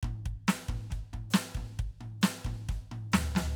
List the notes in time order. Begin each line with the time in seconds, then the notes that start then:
0.03 kick, mid tom
0.26 kick, mid tom
0.47 snare, hi-hat pedal
0.68 kick, mid tom
0.90 kick, snare
1.13 kick, mid tom
1.30 snare, hi-hat pedal
1.55 kick, mid tom
1.79 kick
2.01 mid tom
2.21 snare, hi-hat pedal
2.45 kick, mid tom
2.69 kick, snare
2.91 mid tom
3.12 snare, floor tom, hi-hat pedal
3.35 snare, floor tom